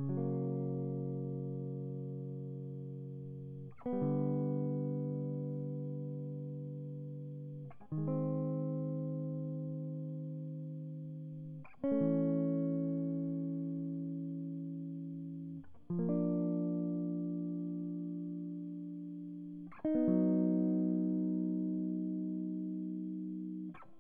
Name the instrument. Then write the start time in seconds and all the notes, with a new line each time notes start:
electric guitar
0.00 C#3
0.10 F#3
0.18 A#3
3.87 B3
3.94 G3
4.03 D3
7.93 D#3
7.99 G#3
8.08 C4
11.84 C#4
11.93 A3
12.02 E3
15.91 F3
16.00 A#3
16.10 D4
19.85 D#4
19.96 B3
20.09 F#3